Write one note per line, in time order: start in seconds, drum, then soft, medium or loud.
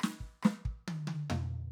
0.01 cross-stick medium
0.01 snare loud
0.20 kick soft
0.43 cross-stick medium
0.43 snare loud
0.65 kick medium
0.88 high tom loud
1.07 high tom loud
1.30 floor tom loud